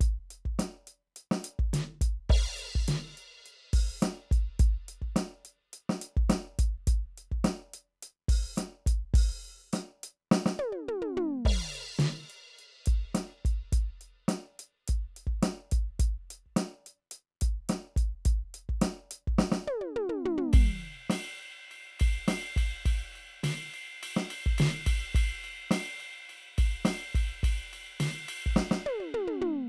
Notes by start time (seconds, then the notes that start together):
0.01 closed hi-hat, kick
0.31 closed hi-hat
0.46 kick
0.59 snare, closed hi-hat
0.88 closed hi-hat
1.17 closed hi-hat
1.32 snare
1.45 closed hi-hat
1.59 kick
1.74 snare, closed hi-hat
2.02 kick, closed hi-hat
2.30 kick, crash
2.57 closed hi-hat
2.76 kick
2.88 snare, closed hi-hat
3.18 closed hi-hat
3.46 closed hi-hat
3.74 kick, open hi-hat
4.01 snare, closed hi-hat, hi-hat pedal
4.32 kick, closed hi-hat
4.60 closed hi-hat, kick
4.89 closed hi-hat
5.02 kick
5.16 snare, closed hi-hat
5.45 closed hi-hat
5.73 closed hi-hat
5.90 snare
6.02 closed hi-hat
6.17 kick
6.30 snare, closed hi-hat
6.59 kick, closed hi-hat
6.88 closed hi-hat, kick
7.18 closed hi-hat
7.32 kick
7.45 snare, closed hi-hat
7.74 closed hi-hat
8.03 closed hi-hat
8.29 kick, open hi-hat
8.57 snare, closed hi-hat, hi-hat pedal
8.87 kick, closed hi-hat
9.14 open hi-hat, kick
9.73 snare, hi-hat pedal, open hi-hat
10.04 closed hi-hat
10.32 snare
10.46 snare
10.59 high tom
10.72 high tom
10.88 mid tom
11.02 mid tom
11.17 floor tom
11.45 kick, crash
11.74 closed hi-hat
11.99 closed hi-hat, snare
12.30 closed hi-hat
12.59 closed hi-hat
12.86 kick, closed hi-hat
13.15 snare, closed hi-hat
13.45 kick, closed hi-hat
13.73 kick, closed hi-hat
14.01 closed hi-hat
14.29 snare, closed hi-hat
14.60 closed hi-hat
14.88 kick, closed hi-hat
15.17 open hi-hat
15.27 kick
15.43 snare, closed hi-hat
15.72 kick, closed hi-hat
16.00 closed hi-hat, kick
16.31 closed hi-hat
16.46 kick
16.57 snare, closed hi-hat
16.87 closed hi-hat
17.12 closed hi-hat
17.42 kick, closed hi-hat
17.69 snare, closed hi-hat
17.97 kick, closed hi-hat
18.26 closed hi-hat, kick
18.55 closed hi-hat
18.69 kick
18.82 snare, closed hi-hat
19.11 closed hi-hat
19.28 kick
19.39 snare
19.52 snare
19.68 high tom
19.81 high tom
19.96 mid tom
20.09 mid tom
20.25 floor tom
20.38 floor tom
20.53 kick, ride
21.10 snare, ride
21.42 ride
21.71 ride
22.00 kick, ride
22.28 snare, ride
22.57 kick, ride
22.86 kick, ride
23.16 ride
23.44 snare, ride
23.74 ride
24.03 ride
24.17 snare
24.31 ride
24.46 kick
24.59 snare, ride
24.87 kick, ride
25.15 kick, ride
25.44 ride
25.71 snare, ride
26.00 ride
26.30 ride
26.58 kick, ride
26.85 snare, ride
27.15 kick, ride
27.44 kick, ride
27.73 ride
28.00 snare, ride
28.29 ride
28.47 kick
28.57 snare
28.72 snare
28.86 high tom
29.00 high tom
29.14 mid tom
29.28 mid tom
29.41 floor tom